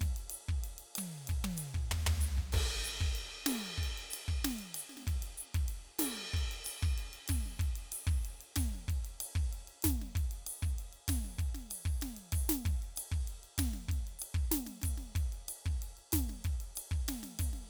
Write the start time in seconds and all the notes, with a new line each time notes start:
0.01 kick, ride
0.16 ride
0.30 hi-hat pedal, ride
0.49 kick
0.64 ride
0.78 ride
0.96 hi-hat pedal, high tom, ride
1.27 kick, ride
1.44 high tom
1.57 hi-hat pedal, ride
1.74 kick
1.91 floor tom
2.07 floor tom
2.21 hi-hat pedal, ride
2.38 kick
2.53 kick, crash, ride
2.84 hi-hat pedal, ride
3.01 kick
3.15 ride
3.46 snare, hi-hat pedal, ride
3.78 kick
3.83 ride
3.98 ride
4.11 hi-hat pedal, ride
4.28 kick
4.45 snare, ride
4.59 ride
4.75 hi-hat pedal, ride
4.89 snare
4.97 snare
5.02 snare
5.07 kick, ride
5.22 ride
5.38 hi-hat pedal
5.43 snare
5.55 kick, ride
5.68 ride
5.99 kick, snare, hi-hat pedal, ride
6.16 snare
6.34 kick, ride
6.51 ride
6.64 hi-hat pedal, ride
6.83 kick, snare
6.98 ride
7.13 ride
7.28 kick, snare, hi-hat pedal, ride
7.46 snare
7.59 kick, ride
7.76 ride
7.92 hi-hat pedal, ride
8.07 kick, snare
8.25 ride
8.41 ride
8.56 kick, snare, hi-hat pedal, ride
8.75 snare
8.88 kick, ride
9.05 ride
9.21 hi-hat pedal, ride
9.35 kick, snare
9.53 ride
9.68 ride
9.83 kick, snare, hi-hat pedal, ride
10.02 snare
10.15 kick, ride
10.31 ride
10.47 hi-hat pedal, ride
10.63 kick, snare
10.79 ride
10.93 ride
11.08 kick, snare, hi-hat pedal, ride
11.25 snare
11.39 kick, ride
11.55 snare, ride
11.71 hi-hat pedal, ride
11.85 kick
12.02 snare, ride
12.17 ride
12.32 kick, hi-hat pedal, ride
12.49 snare
12.65 kick, ride
12.82 ride
12.96 hi-hat pedal, ride
13.12 kick
13.28 ride
13.43 ride
13.58 kick, snare, hi-hat pedal, ride
13.74 snare
13.89 kick, snare, ride
14.07 ride
14.19 hi-hat pedal, ride
14.34 kick
14.52 snare, ride
14.67 snare, ride
14.82 kick, snare, hi-hat pedal, ride
14.98 snare
15.15 kick, ride
15.32 ride
15.48 hi-hat pedal, ride
15.65 kick, snare
15.82 ride
15.97 ride
16.12 kick, snare, hi-hat pedal, ride
16.29 snare
16.44 kick, ride
16.60 ride
16.76 hi-hat pedal, ride
16.91 kick
17.08 snare, ride
17.23 snare, ride
17.39 kick, snare, hi-hat pedal, ride
17.53 snare